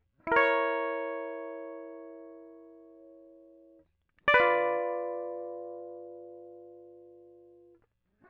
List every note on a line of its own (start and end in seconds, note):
0.27 3.84 E4
0.32 3.83 A#4
0.37 3.84 C#5
4.28 7.16 D5
4.35 7.77 B4
4.40 7.82 F4